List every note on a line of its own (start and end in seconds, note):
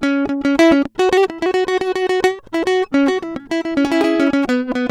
0.04 0.28 C#4
0.30 0.45 C#4
0.46 0.60 C#4
0.60 0.79 E4
0.73 0.85 C#4
1.00 1.11 F#4
1.14 1.24 G4
1.24 1.43 E4
1.43 1.51 F#4
1.55 1.67 F#4
1.69 1.82 F#4
1.82 1.94 F#4
1.97 2.10 F#4
2.11 2.22 F#4
2.25 2.42 F#4
2.55 2.65 E4
2.68 2.89 F#4
2.95 3.14 C#4
3.09 3.21 F#4
3.24 3.42 E4
3.37 3.49 C#4
3.52 3.64 E4
3.66 3.79 E4
3.78 3.85 C#4
3.86 4.18 C#4
3.92 4.06 E4
4.01 4.30 G#4
4.06 4.38 E4
4.21 4.35 C#4
4.35 4.47 C#4
4.50 4.73 B3
4.76 4.90 B3